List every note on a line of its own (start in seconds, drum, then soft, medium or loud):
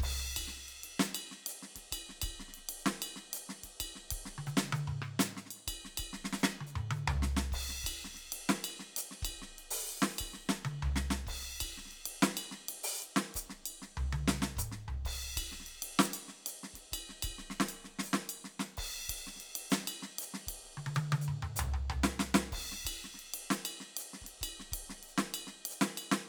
0.00 kick soft
0.00 hi-hat pedal soft
0.00 crash loud
0.09 kick soft
0.20 cross-stick soft
0.37 kick soft
0.37 ride bell loud
0.48 snare soft
0.57 snare soft
0.69 ride medium
0.84 ride medium
1.00 snare loud
1.00 hi-hat pedal medium
1.15 ride bell loud
1.32 snare soft
1.47 hi-hat pedal medium
1.47 ride loud
1.63 snare soft
1.76 kick soft
1.76 snare soft
1.76 ride medium
1.92 kick soft
1.92 hi-hat pedal soft
1.92 ride bell loud
2.10 snare soft
2.22 kick soft
2.22 ride bell loud
2.30 kick soft
2.40 snare soft
2.49 snare soft
2.54 snare soft
2.54 ride medium
2.69 ride loud
2.80 hi-hat pedal soft
2.86 snare loud
3.03 ride bell loud
3.17 snare soft
3.34 hi-hat pedal medium
3.34 ride loud
3.50 snare medium
3.64 kick soft
3.64 snare soft
3.64 ride medium
3.81 kick soft
3.81 ride bell loud
3.96 snare soft
4.11 kick soft
4.11 ride loud
4.18 kick soft
4.26 snare soft
4.39 high tom medium
4.47 hi-hat pedal soft
4.47 high tom medium
4.58 snare loud
4.73 hi-hat pedal soft
4.73 high tom loud
4.88 mid tom medium
5.02 cross-stick medium
5.20 snare loud
5.20 hi-hat pedal loud
5.37 snare medium
5.46 snare soft
5.51 ride bell medium
5.57 snare soft
5.68 kick soft
5.68 ride bell loud
5.85 snare soft
5.98 kick soft
5.98 ride bell loud
6.14 snare medium
6.25 snare medium
6.33 snare medium
6.39 hi-hat pedal medium
6.44 snare loud
6.61 high tom medium
6.67 hi-hat pedal soft
6.76 mid tom loud
6.91 high tom loud
6.96 hi-hat pedal soft
7.08 floor tom loud
7.23 snare medium
7.37 snare loud
7.53 kick soft
7.53 hi-hat pedal soft
7.53 crash loud
7.62 kick soft
7.70 snare soft
7.85 kick soft
7.85 ride bell loud
8.05 snare soft
8.15 snare soft
8.15 ride soft
8.33 ride loud
8.50 snare loud
8.65 ride bell loud
8.80 snare soft
8.97 hi-hat pedal loud
8.97 ride loud
9.11 snare soft
9.23 kick soft
9.23 ride bell loud
9.29 kick soft
9.42 snare soft
9.59 ride medium
9.71 open hi-hat loud
9.90 ride medium
10.03 snare loud
10.19 kick soft
10.19 ride bell loud
10.34 snare soft
10.49 snare loud
10.65 high tom loud
10.83 floor tom loud
10.96 snare medium
11.11 snare loud
11.27 kick soft
11.27 crash medium
11.33 kick soft
11.43 cross-stick soft
11.61 kick soft
11.61 ride bell loud
11.78 snare soft
11.86 snare soft
11.91 snare soft
11.91 ride soft
11.97 snare soft
12.06 ride loud
12.23 snare loud
12.38 ride bell loud
12.52 snare soft
12.69 ride loud
12.84 open hi-hat loud
13.03 ride medium
13.17 snare loud
13.35 kick soft
13.35 hi-hat pedal loud
13.35 ride medium
13.50 snare soft
13.66 ride bell loud
13.82 snare soft
13.98 floor tom loud
14.13 high tom loud
14.28 snare loud
14.43 snare loud
14.57 kick soft
14.57 hi-hat pedal loud
14.57 mid tom medium
14.63 kick soft
14.72 snare soft
14.89 floor tom medium
15.06 kick soft
15.06 crash loud
15.37 kick soft
15.37 ride bell loud
15.52 snare soft
15.60 snare soft
15.67 ride medium
15.83 ride loud
16.00 snare loud
16.00 hi-hat pedal loud
16.14 ride bell loud
16.29 snare soft
16.47 hi-hat pedal medium
16.47 ride loud
16.64 snare soft
16.74 kick soft
16.74 snare soft
16.74 ride medium
16.93 kick soft
16.93 ride bell loud
17.10 snare soft
17.23 kick soft
17.23 ride bell loud
17.31 kick soft
17.39 snare soft
17.51 snare medium
17.61 snare loud
17.66 hi-hat pedal soft
17.66 ride bell medium
17.85 snare soft
17.99 snare medium
17.99 hi-hat pedal medium
18.14 snare medium
18.30 hi-hat pedal soft
18.30 ride bell loud
18.45 snare soft
18.60 snare medium
18.78 kick soft
18.78 crash loud
19.00 snare soft
19.09 kick soft
19.09 ride loud
19.27 snare soft
19.37 snare soft
19.41 ride medium
19.56 ride loud
19.71 snare loud
19.71 hi-hat pedal medium
19.88 ride bell loud
20.03 snare medium
20.19 hi-hat pedal medium
20.19 ride loud
20.34 snare medium
20.48 kick soft
20.48 ride loud
20.62 hi-hat pedal soft
20.67 cross-stick soft
20.78 high tom medium
20.87 high tom medium
20.95 hi-hat pedal soft
20.95 high tom loud
21.13 high tom loud
21.22 hi-hat pedal medium
21.29 mid tom medium
21.43 mid tom medium
21.57 hi-hat pedal loud
21.57 floor tom loud
21.74 floor tom medium
21.90 floor tom loud
22.04 snare loud
22.20 snare loud
22.35 snare loud
22.53 kick soft
22.53 crash loud
22.72 snare soft
22.86 kick soft
22.86 ride bell loud
23.05 snare soft
23.15 snare soft
23.20 ride medium
23.34 ride loud
23.51 snare medium
23.51 hi-hat pedal medium
23.66 ride bell loud
23.81 snare soft
23.97 hi-hat pedal medium
23.97 ride loud
24.14 snare soft
24.22 kick soft
24.22 snare soft
24.27 ride medium
24.42 kick soft
24.42 hi-hat pedal soft
24.42 ride bell loud
24.60 snare soft
24.73 kick soft
24.73 ride loud
24.90 snare soft
25.03 ride medium
25.09 hi-hat pedal soft
25.18 snare loud
25.35 ride bell loud
25.48 snare soft
25.66 ride loud
25.71 hi-hat pedal medium
25.82 snare loud
25.98 ride bell loud
26.12 snare loud